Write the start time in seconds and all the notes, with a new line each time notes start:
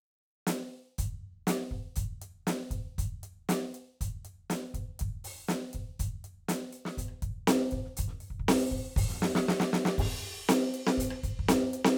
0.47 closed hi-hat, snare
0.98 closed hi-hat, kick
1.08 kick
1.47 closed hi-hat, snare
1.71 kick
1.96 closed hi-hat, kick
2.22 closed hi-hat
2.47 closed hi-hat, snare
2.71 kick, closed hi-hat
2.98 closed hi-hat, kick
3.23 closed hi-hat
3.49 closed hi-hat, snare
3.74 closed hi-hat
4.01 closed hi-hat, kick
4.25 closed hi-hat
4.50 closed hi-hat, snare
4.74 kick, closed hi-hat
4.99 kick, closed hi-hat
5.24 open hi-hat
5.48 closed hi-hat, snare, hi-hat pedal
5.73 kick, closed hi-hat
5.99 closed hi-hat, kick
6.24 closed hi-hat
6.49 closed hi-hat, snare
6.73 open hi-hat
6.85 snare
6.97 closed hi-hat, kick
7.08 cross-stick
7.22 kick, closed hi-hat
7.47 closed hi-hat, snare
7.71 kick, closed hi-hat
7.85 snare
7.97 closed hi-hat, kick
8.08 snare
8.20 open hi-hat
8.30 kick
8.39 kick
8.48 open hi-hat, snare
8.71 kick, open hi-hat
8.96 open hi-hat, kick
9.09 snare
9.14 snare
9.22 snare
9.35 snare
9.48 snare
9.60 snare
9.73 snare
9.85 snare
9.98 kick, hi-hat pedal, crash
10.24 closed hi-hat
10.49 closed hi-hat, snare
10.74 closed hi-hat
10.87 snare
10.97 closed hi-hat, kick
11.11 cross-stick
11.23 closed hi-hat, kick
11.39 kick
11.49 closed hi-hat, snare
11.73 closed hi-hat
11.85 snare